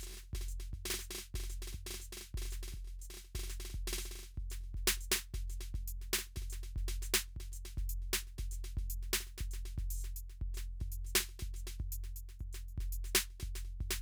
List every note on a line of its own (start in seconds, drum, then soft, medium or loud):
0.01 snare soft
0.01 hi-hat pedal medium
0.07 snare soft
0.09 snare soft
0.11 snare soft
0.12 snare soft
0.17 snare soft
0.23 snare soft
0.33 kick soft
0.33 snare soft
0.41 snare soft
0.48 snare soft
0.48 hi-hat pedal medium
0.60 snare soft
0.73 kick soft
0.73 snare soft
0.85 snare medium
0.90 snare medium
0.94 snare medium
0.99 snare soft
0.99 hi-hat pedal medium
1.11 snare medium
1.15 snare medium
1.18 snare soft
1.34 kick soft
1.34 snare soft
1.40 snare soft
1.44 snare soft
1.50 snare soft
1.50 hi-hat pedal medium
1.62 snare soft
1.67 snare soft
1.73 kick soft
1.73 snare soft
1.86 snare medium
1.91 snare medium
1.94 snare soft
2.00 snare soft
2.00 hi-hat pedal medium
2.12 snare soft
2.17 snare soft
2.21 snare soft
2.34 kick soft
2.34 snare soft
2.42 snare soft
2.45 snare soft
2.51 snare soft
2.51 hi-hat pedal medium
2.63 snare soft
2.68 snare soft
2.72 kick soft
2.72 snare soft
2.77 snare soft
2.84 snare soft
2.87 snare soft
2.99 snare soft
2.99 hi-hat pedal medium
2.99 crash soft
3.10 snare soft
3.14 snare soft
3.17 snare soft
3.24 snare soft
3.35 kick soft
3.35 snare soft
3.39 snare soft
3.43 snare soft
3.48 snare soft
3.50 snare soft
3.50 hi-hat pedal medium
3.60 snare soft
3.65 snare soft
3.70 snare soft
3.74 kick soft
3.74 snare soft
3.87 snare medium
3.93 snare medium
3.98 snare medium
3.98 hi-hat pedal medium
4.05 snare soft
4.11 snare soft
4.19 snare soft
4.23 snare soft
4.31 snare soft
4.34 kick soft
4.34 snare soft
4.39 snare soft
4.50 snare soft
4.50 hi-hat pedal medium
4.64 snare soft
4.74 kick soft
4.74 snare soft
4.87 snare loud
4.97 snare soft
4.97 hi-hat pedal medium
5.12 snare loud
5.16 snare medium
5.34 kick soft
5.34 snare soft
5.48 snare soft
5.50 snare soft
5.50 hi-hat pedal medium
5.61 snare soft
5.74 kick soft
5.74 snare soft
5.88 closed hi-hat medium
6.01 snare soft
6.13 snare loud
6.19 snare soft
6.27 snare soft
6.36 kick soft
6.36 snare soft
6.42 snare soft
6.50 snare soft
6.50 hi-hat pedal medium
6.63 snare soft
6.76 kick soft
6.76 snare soft
6.88 snare medium
7.01 snare soft
7.01 hi-hat pedal loud
7.14 snare loud
7.28 snare soft
7.36 kick soft
7.36 snare soft
7.52 snare soft
7.52 hi-hat pedal medium
7.65 snare soft
7.76 kick soft
7.76 snare soft
7.78 snare soft
7.89 open hi-hat medium
8.02 snare soft
8.13 snare medium
8.22 snare soft
8.27 snare soft
8.38 kick soft
8.38 snare soft
8.51 snare soft
8.51 hi-hat pedal medium
8.64 snare soft
8.77 kick soft
8.77 snare soft
8.90 closed hi-hat loud
9.03 snare soft
9.13 snare loud
9.20 snare soft
9.27 snare soft
9.38 kick soft
9.38 snare soft
9.51 snare soft
9.51 hi-hat pedal medium
9.65 snare soft
9.78 kick soft
9.78 snare soft
9.90 open hi-hat medium
10.01 snare soft
10.01 hi-hat pedal medium
10.16 closed hi-hat medium
10.29 snare soft
10.41 kick soft
10.54 snare soft
10.54 closed hi-hat soft
10.54 hi-hat pedal medium
10.54 crash soft
10.57 snare soft
10.80 kick soft
10.80 snare soft
10.92 closed hi-hat medium
11.04 snare soft
11.04 hi-hat pedal medium
11.15 snare loud
11.20 snare soft
11.29 snare soft
11.39 kick soft
11.39 snare soft
11.54 snare soft
11.54 hi-hat pedal medium
11.67 snare soft
11.79 kick soft
11.79 snare soft
11.92 closed hi-hat loud
12.04 snare soft
12.16 closed hi-hat medium
12.29 snare soft
12.39 open hi-hat soft
12.39 kick soft
12.53 snare soft
12.53 closed hi-hat soft
12.53 hi-hat pedal medium
12.68 closed hi-hat soft
12.78 kick soft
12.78 snare soft
12.92 closed hi-hat medium
13.04 snare soft
13.04 hi-hat pedal medium
13.15 snare loud
13.30 snare soft
13.40 kick soft
13.40 snare soft
13.55 snare soft
13.55 hi-hat pedal medium
13.65 snare soft
13.81 kick soft
13.81 snare soft
13.91 snare medium